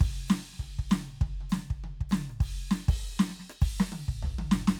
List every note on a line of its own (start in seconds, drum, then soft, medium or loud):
0.01 kick loud
0.01 crash medium
0.28 snare loud
0.28 hi-hat pedal medium
0.28 crash medium
0.53 snare soft
0.59 kick medium
0.59 high tom medium
0.79 kick medium
0.79 high tom medium
0.90 snare loud
0.90 hi-hat pedal medium
0.90 high tom loud
1.08 cross-stick soft
1.21 kick loud
1.21 high tom medium
1.41 high tom medium
1.50 snare loud
1.50 hi-hat pedal medium
1.50 high tom medium
1.71 kick medium
1.84 high tom medium
2.01 kick medium
2.10 snare loud
2.10 hi-hat pedal medium
2.10 high tom loud
2.30 cross-stick medium
2.41 kick loud
2.41 crash medium
2.71 snare loud
2.89 kick loud
2.89 crash medium
3.20 snare loud
3.30 snare medium
3.40 snare medium
3.50 cross-stick medium
3.62 kick loud
3.62 crash medium
3.80 snare loud
3.92 high tom loud
4.09 kick medium
4.23 floor tom loud
4.39 high tom loud
4.52 snare loud
4.68 snare loud